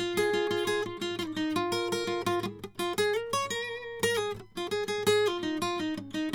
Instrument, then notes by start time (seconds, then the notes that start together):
acoustic guitar
0.00 F4
0.18 G#4
0.35 F4
0.52 F4
0.66 F4 G#4
0.87 F4
1.03 F4
1.21 E4
1.38 D#4
1.57 F4
1.73 A#4
1.93 A#4
2.09 F4
2.23 A#4
2.28 F4
2.80 F4
2.99 G#4
3.15 A#4
3.34 C#5
3.52 A#4
4.04 A#4
4.18 G#4
4.59 F4
4.73 G#4
4.89 G#4
5.08 G#4
5.29 F4
5.44 D#4
5.63 F4
5.81 D#4
5.99 C#4
6.16 D#4